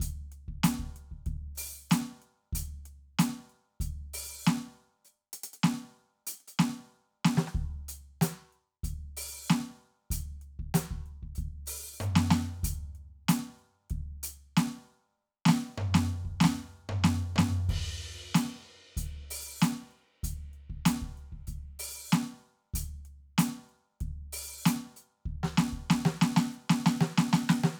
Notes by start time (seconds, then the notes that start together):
0.01 closed hi-hat, kick
0.33 closed hi-hat
0.49 kick
0.64 closed hi-hat, snare
0.80 kick
0.97 closed hi-hat
1.12 kick
1.27 kick, closed hi-hat
1.56 open hi-hat, hi-hat pedal
1.91 closed hi-hat, snare, hi-hat pedal
2.23 closed hi-hat
2.54 closed hi-hat, kick
2.86 closed hi-hat
3.20 closed hi-hat, snare
3.50 closed hi-hat
3.81 closed hi-hat, kick
4.14 open hi-hat
4.48 snare, hi-hat pedal
5.06 hi-hat pedal
5.34 closed hi-hat
5.44 closed hi-hat
5.54 closed hi-hat
5.64 snare
6.28 closed hi-hat
6.41 closed hi-hat
6.49 closed hi-hat
6.60 snare
7.26 snare
7.38 snare
7.48 cross-stick
7.56 kick
7.89 closed hi-hat
8.22 closed hi-hat, snare
8.53 closed hi-hat
8.84 closed hi-hat, kick
9.18 open hi-hat
9.50 snare, hi-hat pedal
10.11 closed hi-hat, kick
10.42 closed hi-hat
10.60 kick
10.75 closed hi-hat, snare
10.92 kick
11.07 closed hi-hat
11.24 kick
11.36 closed hi-hat, kick
11.67 open hi-hat, hi-hat pedal
12.01 floor tom, hi-hat pedal
12.16 snare
12.31 snare
12.64 closed hi-hat, kick
12.96 closed hi-hat
13.29 closed hi-hat, snare
13.59 closed hi-hat
13.91 kick, closed hi-hat
14.24 open hi-hat
14.58 snare, hi-hat pedal, open hi-hat
15.46 snare
15.49 snare
15.79 floor tom
15.95 snare
16.26 kick
16.41 snare
16.45 snare
16.90 floor tom
17.05 snare
17.37 snare, floor tom
17.70 kick, ride
18.35 closed hi-hat, snare
18.98 closed hi-hat, kick
19.31 open hi-hat
19.62 closed hi-hat, snare, hi-hat pedal
19.92 closed hi-hat
20.24 closed hi-hat, kick
20.54 closed hi-hat
20.71 kick
20.86 closed hi-hat, snare
21.03 kick
21.18 closed hi-hat
21.33 kick
21.48 closed hi-hat, kick
21.80 open hi-hat
22.13 open hi-hat, snare, hi-hat pedal
22.75 closed hi-hat, kick
23.06 closed hi-hat
23.39 closed hi-hat, snare
23.70 closed hi-hat
24.01 kick, closed hi-hat
24.33 open hi-hat
24.66 open hi-hat, snare, hi-hat pedal
24.97 closed hi-hat
25.26 kick
25.44 snare
25.58 snare
25.73 kick
25.91 snare
26.06 snare
26.22 snare
26.37 snare
26.52 hi-hat pedal
26.70 snare
26.87 snare
27.02 snare
27.19 snare
27.34 snare
27.50 snare
27.64 snare